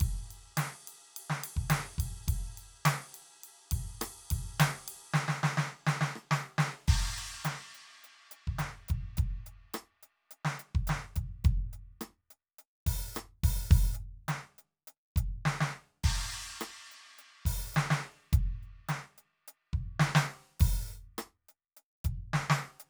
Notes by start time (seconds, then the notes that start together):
0.01 kick, ride
0.31 ride
0.58 snare, ride
0.88 ride
1.17 ride
1.30 snare
1.44 ride
1.57 kick
1.71 snare, ride
1.99 kick, ride
2.28 kick, ride
2.58 ride
2.86 snare, ride
3.15 ride
3.44 ride
3.72 kick, ride
4.02 cross-stick, ride
4.31 kick, ride
4.60 snare, ride
4.89 ride
5.14 snare
5.29 snare
5.44 snare
5.58 snare
5.87 snare
6.02 snare
6.16 cross-stick
6.32 snare
6.59 snare
6.88 kick, crash
7.18 closed hi-hat
7.45 snare, closed hi-hat
7.75 closed hi-hat
8.05 closed hi-hat
8.32 closed hi-hat
8.48 kick
8.59 snare, closed hi-hat
8.89 kick, closed hi-hat
9.18 kick, closed hi-hat
9.47 closed hi-hat
9.74 cross-stick, closed hi-hat
10.03 closed hi-hat
10.31 closed hi-hat
10.45 snare
10.60 closed hi-hat
10.75 kick
10.88 snare, closed hi-hat
11.16 kick, closed hi-hat
11.45 kick, closed hi-hat
11.74 closed hi-hat
12.02 closed hi-hat, cross-stick
12.31 closed hi-hat
12.59 closed hi-hat
12.87 kick, open hi-hat
12.95 kick
13.15 cross-stick, closed hi-hat, hi-hat pedal
13.44 kick, open hi-hat
13.71 kick, open hi-hat
13.94 hi-hat pedal
14.29 snare, closed hi-hat
14.59 closed hi-hat
14.88 closed hi-hat
15.17 kick, closed hi-hat
15.46 snare
15.61 snare
16.04 kick, crash
16.32 closed hi-hat
16.62 closed hi-hat, cross-stick
16.92 closed hi-hat
17.19 closed hi-hat
17.46 kick, open hi-hat
17.53 kick
17.74 snare, hi-hat pedal
17.91 snare
18.33 kick, closed hi-hat
18.63 closed hi-hat
18.89 snare, closed hi-hat
19.18 closed hi-hat
19.48 closed hi-hat
19.74 kick
20.00 snare
20.16 snare
20.60 kick, open hi-hat
20.94 open hi-hat
21.19 cross-stick, closed hi-hat
21.49 closed hi-hat
21.77 closed hi-hat
22.05 kick, closed hi-hat
22.34 snare
22.50 snare
22.80 closed hi-hat